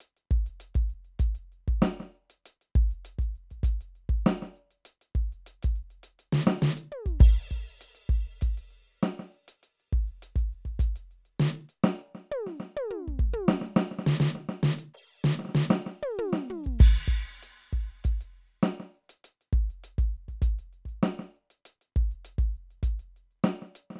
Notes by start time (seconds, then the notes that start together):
0.01 closed hi-hat
0.17 closed hi-hat
0.31 kick, closed hi-hat
0.47 closed hi-hat
0.60 closed hi-hat
0.75 closed hi-hat, kick
0.90 closed hi-hat
1.05 closed hi-hat
1.20 closed hi-hat, kick
1.35 closed hi-hat
1.52 closed hi-hat
1.68 kick
1.82 closed hi-hat, snare
2.00 snare
2.15 closed hi-hat
2.30 closed hi-hat
2.46 closed hi-hat
2.62 closed hi-hat
2.76 kick, closed hi-hat
2.92 closed hi-hat
3.05 closed hi-hat
3.19 closed hi-hat, kick
3.36 closed hi-hat
3.51 kick, closed hi-hat
3.64 closed hi-hat, kick
3.81 closed hi-hat
3.96 closed hi-hat
4.10 kick
4.27 closed hi-hat, snare
4.43 snare
4.56 closed hi-hat
4.71 closed hi-hat
4.86 closed hi-hat
5.02 closed hi-hat
5.16 kick, closed hi-hat
5.33 closed hi-hat
5.47 closed hi-hat
5.63 closed hi-hat, kick
5.76 closed hi-hat
5.91 closed hi-hat
6.04 closed hi-hat
6.20 closed hi-hat
6.33 snare
6.48 snare
6.63 snare
6.77 closed hi-hat
6.92 high tom
7.06 closed hi-hat, kick
7.20 kick, crash
7.36 closed hi-hat
7.50 closed hi-hat, kick
7.66 closed hi-hat
7.81 closed hi-hat
7.95 closed hi-hat
8.10 kick, closed hi-hat
8.27 closed hi-hat
8.42 closed hi-hat, kick
8.58 closed hi-hat
8.71 closed hi-hat
9.03 closed hi-hat, snare
9.20 snare
9.32 closed hi-hat
9.48 closed hi-hat
9.63 closed hi-hat
9.80 closed hi-hat
9.92 kick, closed hi-hat
10.08 closed hi-hat
10.23 closed hi-hat
10.36 closed hi-hat, kick
10.53 closed hi-hat
10.66 kick, closed hi-hat
10.80 closed hi-hat, kick
10.96 closed hi-hat
11.12 closed hi-hat
11.26 closed hi-hat
11.40 snare
11.56 closed hi-hat
11.70 closed hi-hat
11.84 snare
11.99 closed hi-hat
12.15 snare
12.32 high tom
12.47 snare
12.56 hi-hat pedal
12.61 snare
12.77 high tom
12.91 mid tom
13.08 kick
13.20 kick
13.34 mid tom
13.49 snare
13.62 snare
13.77 snare
13.92 snare
13.99 snare
14.07 snare
14.21 snare
14.36 snare
14.49 snare
14.64 snare
14.79 closed hi-hat
14.94 crash
15.25 snare
15.40 snare
15.46 snare
15.50 snare
15.55 snare
15.71 snare
15.87 snare
16.03 high tom
16.19 mid tom
16.33 snare
16.50 floor tom
16.64 closed hi-hat, kick
16.80 kick, crash
17.08 closed hi-hat, kick
17.27 closed hi-hat
17.43 closed hi-hat
17.59 closed hi-hat
17.73 kick, closed hi-hat
17.90 closed hi-hat
18.05 closed hi-hat, kick
18.21 closed hi-hat
18.34 closed hi-hat
18.47 closed hi-hat
18.63 closed hi-hat, snare
18.80 snare
18.95 closed hi-hat
19.10 closed hi-hat
19.25 closed hi-hat
19.41 closed hi-hat
19.53 kick, closed hi-hat
19.71 closed hi-hat
19.84 closed hi-hat
19.99 kick, closed hi-hat
20.16 closed hi-hat
20.29 kick, closed hi-hat
20.42 closed hi-hat, kick
20.59 closed hi-hat
20.73 closed hi-hat
20.86 kick, closed hi-hat
21.03 closed hi-hat, snare
21.20 snare
21.35 closed hi-hat
21.51 closed hi-hat
21.66 closed hi-hat
21.82 closed hi-hat
21.97 kick, closed hi-hat
22.12 closed hi-hat
22.25 closed hi-hat
22.39 kick, closed hi-hat
22.56 closed hi-hat
22.71 closed hi-hat
22.83 closed hi-hat, kick
23.00 closed hi-hat
23.17 closed hi-hat
23.31 closed hi-hat
23.45 closed hi-hat, snare
23.63 snare
23.76 closed hi-hat
23.91 snare
23.96 snare